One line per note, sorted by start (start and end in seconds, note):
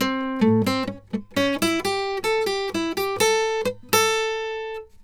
0.02 0.49 C4
0.43 0.66 A3
0.68 0.88 C4
0.90 1.09 C#4
1.15 1.27 A3
1.38 1.60 C#4
1.64 1.83 E4
1.86 2.22 G4
2.26 2.51 A4
2.48 2.72 G4
2.76 2.96 E4
2.99 3.21 G4
3.22 3.65 A4
3.94 4.92 A4